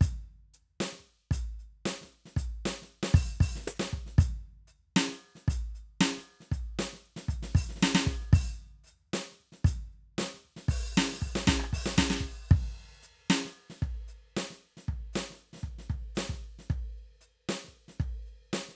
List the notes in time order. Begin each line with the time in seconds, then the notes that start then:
0.01 closed hi-hat, kick
0.54 closed hi-hat
0.80 closed hi-hat, snare
0.92 snare
0.97 kick, snare
1.06 closed hi-hat
1.31 closed hi-hat, kick
1.59 closed hi-hat
1.86 closed hi-hat, snare
2.02 kick, snare
2.05 snare
2.26 snare
2.37 closed hi-hat, kick
2.65 closed hi-hat, snare
2.82 snare
2.90 closed hi-hat
3.03 snare
3.14 open hi-hat, kick
3.40 open hi-hat, kick
3.56 snare
3.59 snare
3.64 snare, hi-hat pedal, high tom
3.80 snare
3.93 kick
4.06 snare
4.18 open hi-hat, kick
4.67 hi-hat pedal
4.96 closed hi-hat, snare
5.09 snare
5.12 snare
5.35 snare
5.48 closed hi-hat, kick
5.74 closed hi-hat
6.01 closed hi-hat, snare
6.18 snare
6.40 snare
6.52 closed hi-hat, kick
6.79 closed hi-hat, snare
6.93 snare
7.05 closed hi-hat
7.16 snare
7.28 closed hi-hat, kick
7.43 snare
7.55 open hi-hat, kick
7.69 snare
7.76 snare
7.80 snare, hi-hat pedal
7.83 snare
7.95 snare
8.07 kick, snare
8.20 snare
8.33 open hi-hat, kick
8.84 closed hi-hat, hi-hat pedal
9.13 closed hi-hat, snare
9.32 snare
9.40 kick, closed hi-hat
9.52 snare
9.65 closed hi-hat, kick
9.92 closed hi-hat
10.18 closed hi-hat, snare
10.21 snare
10.34 snare
10.45 kick
10.57 snare
10.68 open hi-hat, kick
10.97 open hi-hat, snare
11.12 snare
11.16 snare
11.21 open hi-hat, kick, snare
11.35 snare
11.47 kick, snare
11.60 cross-stick
11.64 cross-stick
11.73 open hi-hat, kick
11.86 snare
11.98 kick, snare
12.10 snare
12.21 kick
12.50 kick, crash
13.03 hi-hat pedal
13.30 snare, crash
13.45 snare
13.70 snare
13.82 kick, crash
14.08 hi-hat pedal
14.37 snare, crash
14.50 snare
14.62 crash
14.77 snare
14.87 kick, crash
15.13 snare, hi-hat pedal, crash
15.31 snare
15.33 snare
15.39 crash
15.53 snare
15.56 snare
15.63 kick, crash
15.79 snare
15.90 kick, crash
16.15 snare, hi-hat pedal, crash
16.29 kick, snare
16.43 crash
16.59 snare
16.70 kick, crash
16.97 crash
17.21 hi-hat pedal, crash
17.49 snare, crash
17.64 kick, snare
17.70 hi-hat pedal
17.74 crash
17.88 snare
18.00 kick, crash
18.26 hi-hat pedal, crash
18.53 snare, crash
18.69 snare